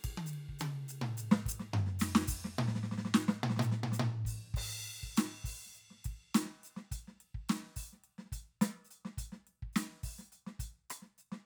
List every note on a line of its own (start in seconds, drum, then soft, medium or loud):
0.01 hi-hat pedal soft
0.05 kick soft
0.05 ride bell medium
0.11 kick soft
0.15 kick soft
0.15 high tom loud
0.20 open hi-hat soft
0.27 hi-hat pedal medium
0.34 ride soft
0.50 kick soft
0.60 hi-hat pedal medium
0.60 high tom loud
0.60 ride medium
0.89 hi-hat pedal medium
0.89 ride medium
1.03 mid tom loud
1.18 hi-hat pedal medium
1.18 ride medium
1.32 snare loud
1.47 kick soft
1.47 hi-hat pedal loud
1.47 ride medium
1.53 kick soft
1.56 kick soft
1.61 snare soft
1.75 floor tom loud
1.87 snare soft
2.00 snare loud
2.00 hi-hat pedal loud
2.16 snare loud
2.23 snare soft
2.28 kick medium
2.28 hi-hat pedal loud
2.36 kick soft
2.45 snare medium
2.60 mid tom loud
2.69 snare medium
2.76 snare medium
2.84 snare medium
2.92 snare medium
2.99 snare medium
3.06 snare medium
3.15 snare loud
3.29 snare medium
3.44 mid tom loud
3.51 snare medium
3.58 snare medium
3.58 mid tom loud
3.63 hi-hat pedal medium
3.73 snare medium
3.84 mid tom loud
3.93 snare medium
3.93 hi-hat pedal medium
4.01 mid tom loud
4.26 kick soft
4.26 hi-hat pedal medium
4.32 kick soft
4.55 kick medium
4.55 crash loud
4.63 kick soft
5.04 kick soft
5.18 closed hi-hat loud
5.18 snare loud
5.45 open hi-hat medium
5.45 kick soft
5.51 kick soft
5.67 snare soft
5.75 open hi-hat soft
5.75 hi-hat pedal soft
5.91 snare soft
5.97 snare soft
6.01 snare soft
6.05 kick soft
6.05 closed hi-hat medium
6.12 kick soft
6.36 closed hi-hat loud
6.36 snare loud
6.46 snare soft
6.64 hi-hat pedal medium
6.64 open hi-hat soft
6.78 snare soft
6.93 closed hi-hat medium
6.93 kick soft
7.09 snare soft
7.17 snare soft
7.21 closed hi-hat soft
7.35 kick soft
7.50 closed hi-hat medium
7.50 snare loud
7.64 snare soft
7.77 open hi-hat medium
7.77 kick soft
7.93 snare soft
8.05 closed hi-hat soft
8.19 snare soft
8.26 snare soft
8.33 closed hi-hat medium
8.33 kick soft
8.62 closed hi-hat loud
8.62 snare loud
8.86 hi-hat pedal soft
8.92 closed hi-hat soft
9.06 snare soft
9.19 closed hi-hat medium
9.19 kick soft
9.24 kick soft
9.33 snare soft
9.48 closed hi-hat soft
9.63 kick soft
9.74 closed hi-hat medium
9.74 snare loud
9.74 hi-hat pedal soft
10.04 open hi-hat medium
10.04 kick soft
10.10 kick soft
10.20 snare soft
10.26 hi-hat pedal soft
10.33 closed hi-hat soft
10.48 snare soft
10.57 closed hi-hat medium
10.57 kick soft
10.57 snare soft
10.66 kick soft
10.91 closed hi-hat medium
10.91 cross-stick medium
11.03 snare soft
11.19 hi-hat pedal soft
11.33 snare soft